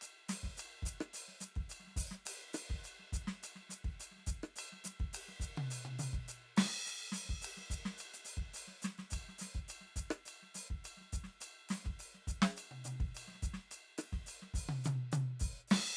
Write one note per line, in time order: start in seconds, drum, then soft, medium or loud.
0.01 hi-hat pedal medium
0.01 ride bell medium
0.28 snare medium
0.28 hi-hat pedal loud
0.28 ride loud
0.43 kick soft
0.43 snare soft
0.57 hi-hat pedal medium
0.57 ride bell loud
0.82 kick soft
0.82 hi-hat pedal loud
0.88 ride soft
1.00 cross-stick medium
1.13 hi-hat pedal medium
1.13 ride bell medium
1.28 snare soft
1.40 snare soft
1.40 hi-hat pedal loud
1.40 ride soft
1.55 kick medium
1.55 ride soft
1.69 hi-hat pedal medium
1.69 ride bell medium
1.80 snare soft
1.84 snare soft
1.87 snare soft
1.90 snare soft
1.96 kick medium
1.96 hi-hat pedal loud
1.96 ride soft
2.11 snare soft
2.11 ride soft
2.25 hi-hat pedal medium
2.25 ride loud
2.53 cross-stick medium
2.53 hi-hat pedal medium
2.53 ride medium
2.69 kick soft
2.69 snare soft
2.84 hi-hat pedal medium
2.84 ride bell medium
2.99 snare soft
3.12 kick medium
3.12 hi-hat pedal loud
3.12 ride soft
3.27 snare medium
3.27 ride soft
3.43 hi-hat pedal medium
3.43 ride bell medium
3.55 snare soft
3.69 snare soft
3.69 hi-hat pedal loud
3.69 ride soft
3.84 kick soft
3.84 ride soft
3.99 hi-hat pedal medium
3.99 ride bell medium
4.11 snare soft
4.15 snare soft
4.18 snare soft
4.26 kick medium
4.26 hi-hat pedal loud
4.26 ride soft
4.43 cross-stick medium
4.43 ride soft
4.55 hi-hat pedal medium
4.55 ride bell loud
4.72 snare soft
4.84 snare soft
4.84 hi-hat pedal loud
4.84 ride soft
4.99 kick medium
4.99 ride soft
5.13 hi-hat pedal medium
5.13 ride loud
5.28 snare soft
5.39 kick soft
5.39 hi-hat pedal medium
5.39 ride soft
5.57 open hi-hat soft
5.57 high tom medium
5.57 ride soft
5.70 hi-hat pedal medium
5.70 ride bell medium
5.85 high tom medium
5.99 hi-hat pedal medium
5.99 high tom medium
5.99 ride soft
6.13 kick soft
6.13 ride soft
6.28 hi-hat pedal medium
6.28 ride bell medium
6.56 snare loud
6.56 hi-hat pedal loud
6.56 crash loud
6.86 hi-hat pedal medium
6.86 ride medium
7.12 snare medium
7.12 hi-hat pedal loud
7.25 kick soft
7.25 snare soft
7.41 hi-hat pedal medium
7.41 ride loud
7.57 snare soft
7.70 kick soft
7.70 hi-hat pedal loud
7.70 ride soft
7.85 snare medium
7.85 ride soft
7.98 hi-hat pedal medium
7.98 ride bell medium
8.13 open hi-hat medium
8.25 hi-hat pedal medium
8.25 ride soft
8.37 kick soft
8.37 ride soft
8.53 hi-hat pedal medium
8.53 ride bell medium
8.67 snare soft
8.82 snare medium
8.82 hi-hat pedal medium
8.82 ride bell soft
8.98 snare soft
8.98 ride soft
9.10 kick soft
9.10 hi-hat pedal medium
9.10 ride bell loud
9.28 snare soft
9.38 snare soft
9.38 hi-hat pedal medium
9.38 ride soft
9.54 kick soft
9.54 ride soft
9.68 hi-hat pedal medium
9.68 ride bell medium
9.81 snare soft
9.96 kick soft
9.96 hi-hat pedal loud
9.96 ride soft
10.10 cross-stick medium
10.10 ride soft
10.25 hi-hat pedal medium
10.25 ride bell medium
10.42 snare soft
10.54 snare soft
10.54 hi-hat pedal loud
10.54 ride soft
10.69 kick soft
10.69 ride soft
10.84 hi-hat pedal medium
10.84 ride bell medium
10.97 snare soft
11.00 snare soft
11.12 kick soft
11.12 hi-hat pedal medium
11.12 ride soft
11.23 snare soft
11.23 ride soft
11.40 hi-hat pedal medium
11.40 ride bell medium
11.69 snare medium
11.69 hi-hat pedal medium
11.69 ride medium
11.84 kick soft
11.84 snare soft
11.99 hi-hat pedal medium
11.99 ride medium
12.14 snare soft
12.27 kick soft
12.27 hi-hat pedal medium
12.27 ride soft
12.42 snare loud
12.56 hi-hat pedal medium
12.56 ride bell medium
12.71 high tom medium
12.84 hi-hat pedal medium
12.84 high tom medium
12.84 ride soft
13.00 kick medium
13.00 ride soft
13.14 hi-hat pedal medium
13.14 ride bell loud
13.27 snare soft
13.31 snare soft
13.34 snare soft
13.42 kick medium
13.42 hi-hat pedal medium
13.42 ride soft
13.53 snare medium
13.53 ride soft
13.71 hi-hat pedal medium
13.71 ride bell medium
13.97 cross-stick medium
13.97 hi-hat pedal medium
13.97 ride medium
14.12 kick soft
14.12 snare soft
14.26 hi-hat pedal medium
14.26 ride bell medium
14.42 snare soft
14.54 kick medium
14.54 hi-hat pedal medium
14.54 ride bell soft
14.69 high tom medium
14.84 hi-hat pedal medium
14.84 high tom loud
15.11 hi-hat pedal medium
15.11 high tom loud
15.39 kick medium
15.39 hi-hat pedal medium
15.67 snare loud
15.67 hi-hat pedal soft
15.67 crash loud